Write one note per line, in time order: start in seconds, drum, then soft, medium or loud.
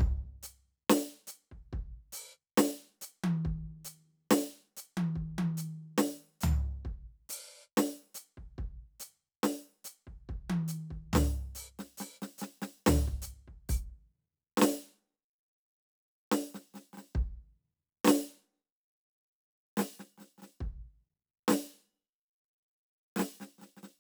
0.01 kick medium
0.43 hi-hat pedal medium
0.90 snare loud
1.27 hi-hat pedal medium
1.52 kick soft
1.73 kick medium
2.13 hi-hat pedal medium
2.58 snare loud
3.02 hi-hat pedal medium
3.24 high tom loud
3.45 kick medium
3.85 hi-hat pedal medium
4.31 snare loud
4.77 hi-hat pedal medium
4.97 high tom loud
5.16 kick medium
5.39 high tom loud
5.57 hi-hat pedal medium
5.98 snare loud
6.41 floor tom loud
6.41 hi-hat pedal medium
6.85 kick medium
6.94 kick soft
7.30 hi-hat pedal loud
7.77 snare loud
8.15 hi-hat pedal medium
8.38 kick soft
8.58 kick medium
9.00 hi-hat pedal medium
9.44 snare medium
9.85 hi-hat pedal medium
10.07 kick soft
10.29 kick medium
10.50 high tom loud
10.68 hi-hat pedal medium
10.91 kick soft
11.13 snare loud
11.13 floor tom loud
11.55 hi-hat pedal medium
11.79 snare medium
11.98 snare medium
11.98 hi-hat pedal medium
12.22 snare medium
12.38 snare medium
12.38 hi-hat pedal medium
12.62 snare medium
12.87 snare loud
12.87 floor tom loud
13.08 kick medium
13.22 hi-hat pedal medium
13.48 kick soft
13.69 open hi-hat loud
13.69 kick medium
13.90 kick soft
14.58 snare medium
14.62 snare loud
16.32 snare loud
16.55 snare soft
16.74 snare soft
16.93 snare soft
16.97 snare soft
17.15 kick medium
18.05 snare loud
18.08 snare loud
19.77 snare loud
19.79 snare loud
20.00 snare soft
20.18 snare soft
20.20 snare soft
20.38 snare soft
20.42 snare soft
20.61 kick medium
21.48 snare loud
21.51 snare loud
23.16 snare medium
23.20 snare loud
23.40 snare soft
23.42 snare soft
23.59 snare soft
23.62 snare soft
23.77 snare soft
23.83 snare soft